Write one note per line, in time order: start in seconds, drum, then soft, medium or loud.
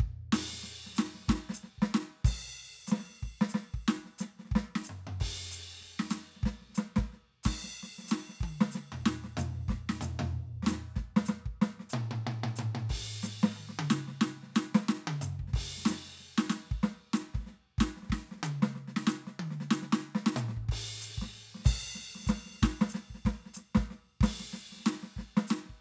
0.01 kick medium
0.34 snare loud
0.34 hi-hat pedal loud
0.34 ride loud
0.54 snare soft
0.64 snare soft
0.87 snare soft
0.92 snare soft
0.95 snare soft
0.95 hi-hat pedal loud
0.97 snare soft
0.99 snare loud
1.16 snare soft
1.21 snare soft
1.25 snare soft
1.29 kick medium
1.29 snare soft
1.29 snare loud
1.35 snare soft
1.51 snare medium
1.55 hi-hat pedal loud
1.65 snare soft
1.79 kick soft
1.83 snare loud
1.95 snare loud
2.26 kick loud
2.26 snare soft
2.26 hi-hat pedal loud
2.26 crash loud
2.47 crash soft
2.88 snare soft
2.88 hi-hat pedal loud
2.93 snare loud
2.98 snare soft
3.04 snare soft
3.08 snare soft
3.11 snare soft
3.15 snare soft
3.24 kick medium
3.24 snare soft
3.42 snare loud
3.50 hi-hat pedal loud
3.56 snare medium
3.75 kick medium
3.89 snare loud
4.06 snare soft
4.19 snare medium
4.19 hi-hat pedal loud
4.40 snare soft
4.46 snare soft
4.50 kick medium
4.50 snare soft
4.54 snare soft
4.57 snare loud
4.77 snare loud
4.85 hi-hat pedal loud
4.90 floor tom medium
5.08 floor tom medium
5.22 kick medium
5.22 ride loud
5.52 hi-hat pedal loud
5.82 kick soft
5.82 snare soft
6.01 snare loud
6.11 snare loud
6.11 hi-hat pedal loud
6.37 snare soft
6.42 kick medium
6.42 snare soft
6.45 snare soft
6.47 snare medium
6.62 snare soft
6.67 snare soft
6.70 snare soft
6.73 snare soft
6.73 hi-hat pedal loud
6.79 snare medium
6.97 kick medium
6.97 snare loud
7.14 snare soft
7.44 kick medium
7.44 snare loud
7.44 hi-hat pedal loud
7.44 crash loud
7.65 snare soft
7.84 snare soft
7.99 snare soft
8.05 snare soft
8.08 snare soft
8.08 hi-hat pedal loud
8.11 snare soft
8.11 snare loud
8.30 snare soft
8.42 kick medium
8.42 high tom medium
8.62 snare loud
8.72 snare medium
8.72 hi-hat pedal loud
8.93 floor tom medium
9.01 kick soft
9.07 snare loud
9.25 snare soft
9.38 hi-hat pedal loud
9.38 floor tom loud
9.55 snare soft
9.59 snare soft
9.69 kick medium
9.69 snare medium
9.90 snare loud
10.02 hi-hat pedal loud
10.02 floor tom loud
10.20 floor tom loud
10.64 snare medium
10.68 snare loud
10.68 hi-hat pedal loud
10.72 snare medium
10.76 snare soft
10.81 snare soft
10.86 snare soft
10.90 snare soft
10.95 kick medium
10.95 cross-stick soft
10.95 snare medium
11.17 snare loud
11.26 snare medium
11.26 hi-hat pedal loud
11.47 kick medium
11.63 snare loud
11.81 snare soft
11.91 hi-hat pedal loud
11.95 mid tom loud
12.12 mid tom medium
12.28 mid tom loud
12.45 mid tom loud
12.57 hi-hat pedal loud
12.57 mid tom loud
12.76 mid tom loud
12.91 kick medium
12.91 ride loud
13.24 snare medium
13.24 hi-hat pedal loud
13.44 snare loud
13.57 high tom soft
13.70 snare soft
13.80 high tom loud
13.91 snare loud
13.91 hi-hat pedal loud
14.09 snare soft
14.22 snare loud
14.44 snare soft
14.49 snare soft
14.53 snare soft
14.56 snare soft
14.56 snare loud
14.56 hi-hat pedal loud
14.76 snare loud
14.90 snare loud
15.08 high tom loud
15.22 floor tom medium
15.22 hi-hat pedal loud
15.40 kick soft
15.49 snare soft
15.55 kick medium
15.55 ride loud
15.79 snare soft
15.82 snare soft
15.84 snare soft
15.87 snare loud
15.87 hi-hat pedal loud
15.91 snare medium
16.04 snare soft
16.07 snare soft
16.09 snare soft
16.12 snare soft
16.14 snare soft
16.21 snare soft
16.39 snare loud
16.50 snare loud
16.50 hi-hat pedal loud
16.72 kick medium
16.84 snare loud
17.15 snare loud
17.15 hi-hat pedal loud
17.35 kick medium
17.35 snare soft
17.40 snare soft
17.44 snare soft
17.47 snare soft
17.79 kick medium
17.79 snare loud
17.79 hi-hat pedal loud
17.98 snare soft
18.04 snare soft
18.08 kick medium
18.08 snare soft
18.12 snare soft
18.12 snare loud
18.32 snare soft
18.37 snare soft
18.43 snare soft
18.43 hi-hat pedal loud
18.43 high tom loud
18.63 snare loud
18.76 snare soft
18.89 snare soft
18.97 snare loud
19.08 snare loud
19.08 hi-hat pedal loud
19.28 snare soft
19.41 high tom loud
19.52 snare soft
19.61 snare medium
19.72 snare loud
19.72 hi-hat pedal loud
19.83 snare medium
19.94 snare loud
20.06 snare soft
20.16 snare medium
20.27 snare loud
20.37 hi-hat pedal loud
20.37 mid tom loud
20.50 snare soft
20.58 kick soft
20.70 kick medium
20.70 ride loud
21.02 hi-hat pedal loud
21.19 kick medium
21.19 snare medium
21.56 snare soft
21.60 snare soft
21.66 kick loud
21.66 snare soft
21.66 hi-hat pedal loud
21.66 crash loud
21.70 snare soft
21.96 snare soft
22.16 snare soft
22.21 snare soft
22.24 snare soft
22.28 kick medium
22.28 snare soft
22.28 hi-hat pedal loud
22.30 snare loud
22.47 snare soft
22.52 snare soft
22.56 snare soft
22.60 snare soft
22.64 kick loud
22.64 snare loud
22.82 snare loud
22.90 hi-hat pedal loud
22.96 snare medium
23.11 kick soft
23.16 snare soft
23.26 kick medium
23.26 snare medium
23.47 snare soft
23.55 snare soft
23.55 hi-hat pedal loud
23.76 kick medium
23.76 snare loud
23.92 snare soft
24.22 kick loud
24.22 snare loud
24.22 hi-hat pedal loud
24.22 ride loud
24.41 snare soft
24.54 snare soft
24.73 snare soft
24.78 snare soft
24.81 snare soft
24.86 snare soft
24.86 snare loud
24.86 hi-hat pedal loud
24.92 snare soft
25.04 snare soft
25.18 kick soft
25.18 snare soft
25.38 snare loud
25.48 snare loud
25.48 hi-hat pedal medium
25.67 snare soft
25.71 kick soft
25.71 snare soft